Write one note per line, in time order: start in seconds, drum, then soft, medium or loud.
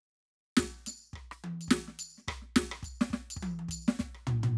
0.57 kick medium
0.57 snare loud
0.57 percussion medium
0.87 snare soft
0.87 percussion loud
1.13 kick soft
1.13 high tom medium
1.32 cross-stick medium
1.44 high tom loud
1.61 percussion medium
1.68 kick soft
1.68 snare loud
1.88 snare soft
1.99 percussion loud
2.18 snare soft
2.28 kick medium
2.28 high tom loud
2.42 snare soft
2.56 kick medium
2.56 snare loud
2.72 high tom loud
2.83 kick medium
2.83 percussion medium
3.01 snare loud
3.10 kick soft
3.10 snare medium
3.31 percussion loud
3.37 kick medium
3.43 high tom loud
3.59 high tom medium
3.69 kick soft
3.69 percussion loud
3.88 snare loud
3.99 kick medium
3.99 snare medium
4.15 crash soft
4.15 high tom soft
4.27 kick soft
4.27 floor tom loud
4.44 floor tom loud